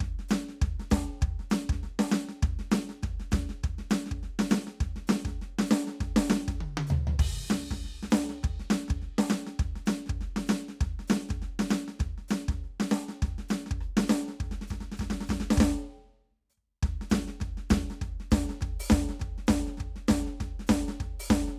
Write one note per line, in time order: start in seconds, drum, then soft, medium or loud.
0.01 kick loud
0.01 snare soft
0.19 snare soft
0.29 snare loud
0.29 hi-hat pedal medium
0.49 snare soft
0.62 kick loud
0.62 snare soft
0.80 snare soft
0.91 kick loud
0.91 snare loud
0.91 hi-hat pedal medium
1.22 kick loud
1.22 snare soft
1.40 snare soft
1.51 snare loud
1.51 hi-hat pedal medium
1.70 kick loud
1.70 snare soft
1.84 snare soft
2.00 snare loud
2.09 snare loud
2.09 hi-hat pedal medium
2.29 snare soft
2.43 kick loud
2.43 snare soft
2.59 snare soft
2.72 snare loud
2.72 hi-hat pedal medium
2.90 snare soft
3.03 kick medium
3.03 snare soft
3.20 snare soft
3.32 kick loud
3.32 snare loud
3.32 hi-hat pedal medium
3.50 snare soft
3.64 kick loud
3.64 snare soft
3.79 snare soft
3.91 snare loud
3.91 hi-hat pedal medium
4.06 snare soft
4.12 kick medium
4.23 snare soft
4.40 snare loud
4.50 snare loud
4.50 hi-hat pedal medium
4.68 snare soft
4.81 kick loud
4.81 snare soft
4.96 snare soft
5.08 snare loud
5.08 hi-hat pedal medium
5.25 kick medium
5.25 snare soft
5.42 snare soft
5.59 snare loud
5.67 hi-hat pedal medium
5.71 snare loud
5.88 snare medium
6.01 kick medium
6.01 snare soft
6.17 snare loud
6.28 snare loud
6.28 hi-hat pedal medium
6.49 kick loud
6.49 snare soft
6.61 high tom medium
6.78 high tom loud
6.88 floor tom loud
6.88 hi-hat pedal medium
7.08 floor tom loud
7.15 kick soft
7.20 kick loud
7.20 crash loud
7.49 snare loud
7.49 hi-hat pedal medium
7.71 kick medium
7.71 snare medium
7.85 snare soft
8.03 snare medium
8.11 snare loud
8.11 hi-hat pedal medium
8.30 snare soft
8.44 kick loud
8.44 snare soft
8.60 snare soft
8.71 snare loud
8.71 hi-hat pedal medium
8.89 kick loud
8.89 snare soft
9.02 snare soft
9.19 snare loud
9.29 snare loud
9.29 hi-hat pedal medium
9.47 snare medium
9.60 kick loud
9.60 snare soft
9.76 snare soft
9.86 snare loud
9.86 hi-hat pedal medium
10.07 kick loud
10.07 snare soft
10.21 snare soft
10.37 snare medium
10.47 snare loud
10.47 hi-hat pedal medium
10.69 snare soft
10.81 kick loud
10.81 snare soft
10.99 kick soft
10.99 snare soft
11.08 snare loud
11.08 hi-hat pedal medium
11.29 kick medium
11.29 snare soft
11.42 snare soft
11.60 snare loud
11.70 snare loud
11.70 hi-hat pedal medium
11.88 snare soft
12.00 kick loud
12.00 snare soft
12.18 snare soft
12.29 snare loud
12.29 hi-hat pedal medium
12.49 kick loud
12.49 snare soft
12.65 snare soft
12.80 snare loud
12.90 snare loud
12.90 hi-hat pedal medium
13.09 snare medium
13.23 kick loud
13.23 snare soft
13.39 snare soft
13.49 snare loud
13.49 hi-hat pedal medium
13.67 snare soft
13.71 kick loud
13.81 cross-stick soft
13.97 snare loud
14.08 snare loud
14.08 hi-hat pedal medium
14.29 snare soft
14.41 kick medium
14.41 snare soft
14.52 snare soft
14.68 kick medium
14.68 hi-hat pedal medium
14.72 snare soft
14.81 snare soft
14.92 snare medium
14.97 kick medium
14.97 hi-hat pedal medium
15.01 snare medium
15.11 snare medium
15.21 snare medium
15.28 kick medium
15.28 snare medium
15.28 hi-hat pedal medium
15.41 snare medium
15.51 snare loud
15.56 kick loud
15.56 hi-hat pedal soft
15.61 snare loud
16.50 hi-hat pedal soft
16.58 kick soft
16.83 kick loud
16.83 snare soft
17.02 snare soft
17.11 kick medium
17.11 snare loud
17.11 hi-hat pedal medium
17.28 snare soft
17.41 kick medium
17.41 snare soft
17.58 snare soft
17.70 kick loud
17.70 snare loud
17.70 hi-hat pedal medium
17.91 snare soft
18.02 kick medium
18.02 snare soft
18.20 snare soft
18.31 kick loud
18.31 snare loud
18.31 hi-hat pedal medium
18.50 snare soft
18.61 kick loud
18.61 snare soft
18.80 open hi-hat loud
18.90 kick loud
18.90 snare loud
18.90 hi-hat pedal medium
19.09 snare soft
19.20 kick medium
19.20 snare soft
19.38 snare soft
19.48 kick loud
19.48 snare loud
19.48 hi-hat pedal medium
19.67 snare soft
19.78 kick medium
19.78 snare soft
19.96 snare soft
20.08 kick medium
20.08 snare loud
20.08 hi-hat pedal medium
20.27 snare soft
20.41 kick medium
20.41 snare medium
20.60 snare soft
20.67 kick medium
20.67 snare loud
20.67 hi-hat pedal medium
20.89 snare medium
21.01 kick medium
21.01 snare soft
21.20 open hi-hat loud
21.28 kick loud
21.28 snare loud
21.28 hi-hat pedal medium
21.48 snare soft